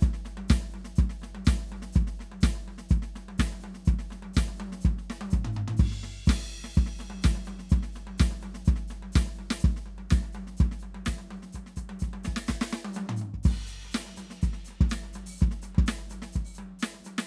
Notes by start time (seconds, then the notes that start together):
0.01 kick, hi-hat pedal, high tom
0.14 snare
0.23 snare, hi-hat pedal, high tom
0.37 high tom
0.48 kick, snare, hi-hat pedal
0.62 high tom
0.70 hi-hat pedal, high tom
0.85 snare
0.96 kick, hi-hat pedal, high tom
1.10 snare
1.19 hi-hat pedal, high tom
1.23 snare
1.35 high tom
1.45 kick, snare, hi-hat pedal
1.59 high tom
1.68 hi-hat pedal
1.72 high tom
1.82 snare
1.93 kick, hi-hat pedal, high tom
2.07 snare
2.15 hi-hat pedal
2.19 snare, high tom
2.32 high tom
2.41 kick, snare, hi-hat pedal
2.56 high tom
2.64 hi-hat pedal
2.68 high tom
2.78 snare
2.89 kick, hi-hat pedal, high tom
3.02 snare
3.12 hi-hat pedal
3.16 snare, high tom
3.29 high tom
3.38 kick, snare, hi-hat pedal
3.46 snare
3.52 high tom
3.61 hi-hat pedal, high tom
3.75 snare
3.85 kick, hi-hat pedal, high tom
3.99 snare
4.08 snare, hi-hat pedal, high tom
4.23 high tom
4.34 kick, snare, hi-hat pedal
4.48 high tom
4.56 hi-hat pedal, high tom
4.72 snare
4.81 hi-hat pedal
4.85 kick, high tom
4.98 snare
5.03 hi-hat pedal
5.10 snare
5.21 high tom
5.30 kick, floor tom, hi-hat pedal
5.45 floor tom
5.53 floor tom, hi-hat pedal
5.68 floor tom
5.77 kick, hi-hat pedal
5.81 ride
5.92 snare
6.00 snare, hi-hat pedal
6.26 kick, snare, hi-hat pedal, crash
6.49 hi-hat pedal
6.55 high tom
6.64 snare
6.74 kick, hi-hat pedal, high tom
6.86 snare
6.97 snare, hi-hat pedal, high tom
7.10 high tom
7.23 kick, snare, hi-hat pedal
7.35 high tom
7.45 hi-hat pedal, high tom
7.59 snare
7.70 kick, hi-hat pedal, high tom
7.83 snare
7.92 snare, hi-hat pedal, high tom
8.07 high tom
8.18 kick, snare, hi-hat pedal
8.31 high tom
8.41 hi-hat pedal, high tom
8.54 snare
8.65 kick, hi-hat pedal, high tom
8.76 snare
8.88 snare, hi-hat pedal, high tom
9.03 high tom
9.12 kick, snare, hi-hat pedal
9.27 high tom
9.34 hi-hat pedal
9.39 high tom
9.51 snare
9.59 hi-hat pedal
9.64 kick
9.77 snare
9.83 hi-hat pedal, high tom
9.98 high tom
10.10 kick, snare, hi-hat pedal
10.23 high tom
10.33 hi-hat pedal, high tom
10.47 snare
10.57 kick, hi-hat pedal, high tom
10.71 snare
10.79 hi-hat pedal, high tom
10.95 high tom
11.05 kick, snare, hi-hat pedal
11.19 high tom
11.26 hi-hat pedal
11.31 high tom
11.43 snare
11.53 kick, hi-hat pedal, high tom
11.66 snare
11.76 kick, hi-hat pedal, high tom
11.89 high tom
11.99 kick, hi-hat pedal
12.04 snare
12.13 high tom
12.24 snare, hi-hat pedal
12.28 kick
12.36 snare
12.47 kick, snare, hi-hat pedal
12.61 snare
12.70 snare, hi-hat pedal
12.85 high tom
12.93 hi-hat pedal, high tom
13.09 floor tom
13.17 hi-hat pedal
13.21 floor tom
13.34 kick
13.43 kick, hi-hat pedal, crash
13.47 crash
13.67 hi-hat pedal
13.85 high tom
13.92 snare, hi-hat pedal
14.00 snare
14.07 high tom
14.17 kick, hi-hat pedal, high tom
14.30 snare
14.42 kick, hi-hat pedal, high tom
14.53 snare
14.65 snare, hi-hat pedal
14.71 high tom
14.81 kick, high tom
14.90 snare, hi-hat pedal
15.04 high tom
15.13 hi-hat pedal, high tom
15.26 open hi-hat
15.38 kick, hi-hat pedal, high tom
15.51 snare
15.62 snare, hi-hat pedal, high tom
15.72 kick, high tom
15.78 kick
15.86 snare, hi-hat pedal
15.99 high tom
16.10 hi-hat pedal, high tom
16.22 snare
16.33 kick, hi-hat pedal, high tom
16.45 open hi-hat
16.54 hi-hat pedal
16.59 high tom
16.79 snare, hi-hat pedal
16.95 high tom
17.01 kick, hi-hat pedal
17.07 high tom
17.18 snare